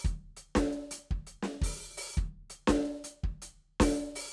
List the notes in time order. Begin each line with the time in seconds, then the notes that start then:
0.01 kick, hi-hat pedal
0.06 closed hi-hat
0.37 closed hi-hat
0.55 kick, snare
0.73 closed hi-hat
0.91 closed hi-hat
1.11 kick
1.27 closed hi-hat
1.43 snare
1.61 open hi-hat, kick
1.97 open hi-hat
2.14 kick, hi-hat pedal
2.50 closed hi-hat
2.67 kick, snare
2.85 closed hi-hat
3.04 closed hi-hat
3.23 kick
3.42 closed hi-hat
3.80 open hi-hat, kick, snare
4.15 open hi-hat